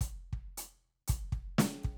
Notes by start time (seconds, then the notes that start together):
0.06 closed hi-hat, kick
0.33 kick
0.58 closed hi-hat
1.08 closed hi-hat, kick
1.32 kick, closed hi-hat
1.58 closed hi-hat, snare
1.64 snare
1.84 kick, closed hi-hat